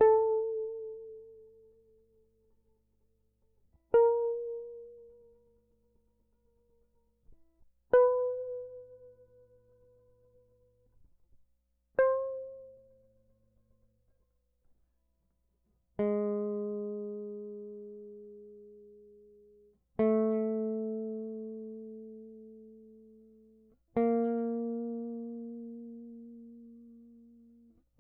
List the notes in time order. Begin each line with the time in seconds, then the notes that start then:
0.00 A4
3.93 A#4
7.93 B4
11.99 C5
16.00 G#3
19.99 A3
23.96 A#3